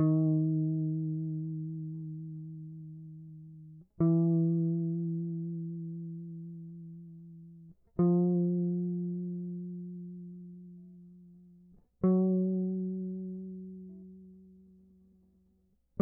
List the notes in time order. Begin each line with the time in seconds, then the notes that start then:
0.00 D#3
4.01 E3
8.00 F3
12.03 F#3